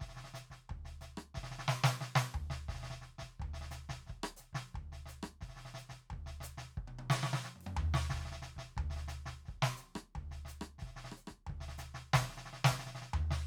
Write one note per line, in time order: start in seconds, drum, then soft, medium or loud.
0.01 kick soft
0.01 snare soft
0.09 snare soft
0.15 snare soft
0.17 snare soft
0.35 snare medium
0.35 hi-hat pedal medium
0.51 kick soft
0.51 snare soft
0.70 kick soft
0.70 floor tom medium
0.86 snare soft
1.02 snare soft
1.02 hi-hat pedal soft
1.18 cross-stick medium
1.35 kick soft
1.35 snare medium
1.44 snare medium
1.52 snare soft
1.59 snare medium
1.69 snare medium
1.84 snare loud
2.01 snare medium
2.16 snare loud
2.35 kick soft
2.35 floor tom medium
2.51 snare medium
2.69 kick medium
2.69 snare soft
2.75 snare soft
2.80 kick soft
2.80 snare soft
2.84 snare medium
2.91 snare soft
3.02 snare soft
3.19 kick soft
3.19 snare medium
3.40 kick soft
3.40 floor tom medium
3.54 snare soft
3.62 snare soft
3.72 snare medium
3.72 hi-hat pedal medium
3.90 kick soft
3.90 snare medium
4.07 kick soft
4.07 snare soft
4.24 cross-stick medium
4.37 snare soft
4.37 hi-hat pedal medium
4.54 kick soft
4.54 snare medium
4.75 kick soft
4.75 floor tom medium
4.93 snare soft
5.06 snare soft
5.06 hi-hat pedal medium
5.23 kick soft
5.23 cross-stick medium
5.41 kick soft
5.41 snare soft
5.49 snare soft
5.55 snare soft
5.57 snare soft
5.66 snare soft
5.75 snare medium
5.79 hi-hat pedal medium
5.90 kick soft
5.90 snare soft
6.11 kick soft
6.11 floor tom medium
6.27 snare soft
6.41 snare soft
6.41 hi-hat pedal loud
6.58 snare medium
6.78 kick medium
6.88 kick soft
6.88 high tom medium
6.99 high tom medium
7.11 snare loud
7.24 snare medium
7.34 snare medium
7.45 snare soft
7.45 hi-hat pedal soft
7.56 mid tom soft
7.62 hi-hat pedal soft
7.62 ride soft
7.67 mid tom medium
7.77 floor tom loud
7.95 snare loud
8.10 kick soft
8.10 snare medium
8.16 snare soft
8.20 snare soft
8.26 snare soft
8.33 snare medium
8.43 snare medium
8.43 hi-hat pedal soft
8.57 kick soft
8.57 snare medium
8.77 kick soft
8.77 floor tom loud
8.91 snare soft
8.97 snare soft
9.08 snare medium
9.08 hi-hat pedal medium
9.26 kick soft
9.26 snare medium
9.45 kick soft
9.45 snare soft
9.63 snare loud
9.77 snare soft
9.77 hi-hat pedal medium
9.96 kick soft
9.96 cross-stick medium
10.16 kick soft
10.16 floor tom medium
10.32 snare soft
10.46 snare soft
10.46 hi-hat pedal medium
10.62 kick soft
10.62 cross-stick medium
10.79 kick soft
10.79 snare soft
10.87 snare soft
10.93 snare soft
10.97 snare soft
11.05 snare soft
11.12 cross-stick medium
11.18 hi-hat pedal soft
11.28 kick soft
11.28 cross-stick medium
11.47 kick soft
11.47 floor tom medium
11.61 snare soft
11.69 snare soft
11.79 snare medium
11.79 hi-hat pedal medium
11.95 snare medium
12.14 kick soft
12.14 snare loud
12.22 snare medium
12.30 snare soft
12.38 snare soft
12.46 snare soft
12.54 snare soft
12.65 snare loud
12.71 kick soft
12.71 snare soft
12.80 snare medium
12.87 snare soft
12.96 snare medium
13.02 snare soft
13.14 floor tom loud
13.31 snare medium